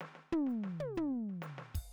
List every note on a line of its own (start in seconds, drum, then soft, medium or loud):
0.00 snare soft
0.00 hi-hat pedal soft
0.16 snare soft
0.32 floor tom loud
0.47 snare soft
0.47 hi-hat pedal soft
0.64 snare soft
0.80 closed hi-hat soft
0.80 high tom medium
0.96 floor tom medium
0.96 hi-hat pedal soft
1.30 snare soft
1.43 snare soft
1.43 hi-hat pedal medium
1.59 snare soft
1.75 kick soft
1.75 ride medium